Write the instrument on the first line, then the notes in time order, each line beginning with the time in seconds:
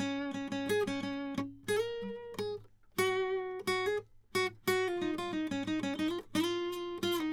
acoustic guitar
0.01 C#4
0.36 C#4
0.53 C#4
0.70 G#4
0.88 C#4
1.05 C#4
1.69 G#4
1.81 A#4
2.40 G#4
2.99 F#4
3.68 F#4
3.87 G#4
4.36 F#4
4.68 F#4
4.89 F4
5.03 D#4
5.19 F4
5.34 D#4
5.52 C#4
5.69 D#4
5.85 C#4
6.00 D#4
6.10 F4
6.36 F4
7.04 F4
7.15 D#4